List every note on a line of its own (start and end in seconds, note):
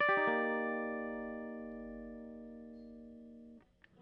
0.01 3.06 D5
0.09 2.95 G4
0.17 3.64 D#4
0.28 3.63 A#3